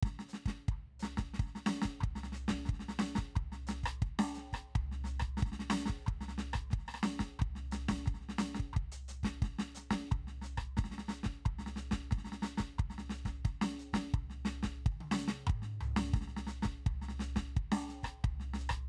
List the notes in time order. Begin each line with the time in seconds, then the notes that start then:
0.02 kick, snare
0.19 snare
0.29 hi-hat pedal
0.33 snare
0.46 kick, snare
0.68 kick, floor tom
0.99 snare, hi-hat pedal
1.17 kick, snare
1.34 snare
1.39 kick, snare
1.46 snare
1.55 snare
1.66 snare, hi-hat pedal
1.82 kick, snare
2.00 kick, floor tom
2.15 snare
2.23 snare
2.32 snare, hi-hat pedal
2.48 kick, snare
2.65 kick, snare
2.73 snare
2.79 snare
2.88 snare
2.99 snare, hi-hat pedal
3.15 kick, snare
3.35 kick, floor tom
3.52 snare
3.67 snare, hi-hat pedal
3.83 kick, cross-stick
4.02 kick, snare
4.19 snare
4.34 snare, hi-hat pedal
4.53 kick, cross-stick
4.75 kick, floor tom
4.91 snare
5.04 snare, hi-hat pedal
5.20 kick, cross-stick
5.37 snare
5.42 kick, snare
5.52 snare
5.59 snare
5.70 snare, hi-hat pedal
5.86 kick, snare
6.06 kick, floor tom
6.21 snare
6.28 snare
6.38 snare, hi-hat pedal
6.53 kick, cross-stick
6.70 kick, snare
6.79 snare
6.85 cross-stick, snare
6.94 cross-stick
6.97 cross-stick
7.03 snare, hi-hat pedal
7.19 kick, snare
7.39 kick, floor tom
7.55 snare
7.71 snare, hi-hat pedal
7.88 kick, snare
8.06 kick, snare
8.14 snare
8.20 snare
8.29 snare
8.38 snare, hi-hat pedal
8.54 snare
8.59 kick
8.73 kick, floor tom
8.92 closed hi-hat
9.08 snare, hi-hat pedal
9.23 kick, snare
9.42 kick, snare
9.59 snare
9.75 snare, hi-hat pedal
9.90 kick, snare
10.11 kick, floor tom
10.27 snare
10.41 snare, hi-hat pedal
10.57 kick, cross-stick
10.77 kick, snare
10.84 snare
10.89 snare
10.91 snare
10.98 snare
11.08 snare, hi-hat pedal
11.23 kick, snare
11.45 kick, floor tom
11.59 snare
11.66 snare
11.76 snare, hi-hat pedal
11.91 kick, snare
12.11 kick, snare
12.17 snare
12.23 snare
12.32 snare
12.42 snare, hi-hat pedal
12.57 kick, snare
12.78 kick, floor tom
12.90 snare
12.98 snare
13.09 snare, hi-hat pedal
13.25 kick, snare
13.45 kick, snare
13.61 snare
13.78 snare, hi-hat pedal
13.93 kick, snare
14.14 kick, floor tom
14.30 snare
14.45 snare
14.50 hi-hat pedal
14.63 kick, snare
14.86 kick
14.92 high tom
15.00 high tom
15.11 snare
15.17 hi-hat pedal
15.28 snare
15.47 kick, mid tom
15.62 snare
15.80 floor tom, hi-hat pedal
15.96 snare
16.13 kick, snare
16.21 snare
16.28 snare
16.37 snare
16.48 hi-hat pedal
16.62 kick, snare
16.86 kick, floor tom
17.02 snare
17.08 snare
17.19 snare, hi-hat pedal
17.36 kick, snare
17.56 kick
17.72 snare
17.89 snare, hi-hat pedal
18.03 kick, cross-stick
18.24 kick, floor tom
18.40 snare
18.54 snare
18.59 hi-hat pedal
18.69 kick, cross-stick